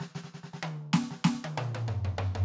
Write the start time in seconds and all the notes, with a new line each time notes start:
0.05 snare
0.15 snare
0.23 snare
0.34 snare
0.43 snare
0.63 high tom
0.93 snare
1.10 snare
1.24 snare
1.44 high tom
1.57 mid tom
1.74 mid tom
1.88 floor tom
2.04 floor tom
2.18 floor tom
2.35 floor tom